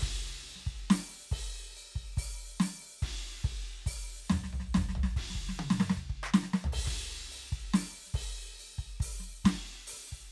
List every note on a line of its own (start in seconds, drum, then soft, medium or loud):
0.01 kick medium
0.01 ride loud
0.49 open hi-hat medium
0.57 snare soft
0.68 kick soft
0.68 open hi-hat soft
0.91 open hi-hat loud
0.91 snare loud
1.12 open hi-hat medium
1.33 kick medium
1.33 crash loud
1.77 open hi-hat medium
1.97 kick soft
1.97 open hi-hat soft
2.18 open hi-hat loud
2.18 kick medium
2.40 open hi-hat soft
2.61 open hi-hat loud
2.61 snare loud
2.82 open hi-hat medium
3.03 kick medium
3.03 ride loud
3.45 kick medium
3.45 crash medium
3.87 open hi-hat loud
3.87 kick medium
4.11 mid tom soft
4.31 kick soft
4.31 snare loud
4.31 floor tom loud
4.45 snare medium
4.52 kick soft
4.52 floor tom medium
4.61 snare medium
4.76 snare loud
4.76 floor tom loud
4.90 snare medium
4.94 kick soft
4.94 floor tom loud
5.04 snare medium
5.18 kick medium
5.18 ride loud
5.31 snare soft
5.36 kick soft
5.36 high tom medium
5.50 snare medium
5.60 hi-hat pedal soft
5.60 high tom loud
5.71 snare loud
5.81 snare loud
5.98 kick soft
6.11 kick soft
6.24 percussion loud
6.35 snare loud
6.44 snare medium
6.55 snare loud
6.65 floor tom loud
6.74 crash loud
6.80 kick soft
6.86 kick medium
6.86 ride loud
7.32 open hi-hat medium
7.53 kick medium
7.53 open hi-hat soft
7.75 open hi-hat loud
7.75 snare loud
7.95 open hi-hat soft
8.07 snare soft
8.11 snare soft
8.15 kick medium
8.15 snare soft
8.15 crash loud
8.60 open hi-hat medium
8.79 kick soft
8.79 open hi-hat soft
9.01 open hi-hat loud
9.01 kick medium
9.21 snare soft
9.21 open hi-hat soft
9.46 kick medium
9.46 snare loud
9.46 ride loud
9.68 open hi-hat soft
9.88 open hi-hat loud
9.94 kick soft
10.09 kick soft
10.09 open hi-hat medium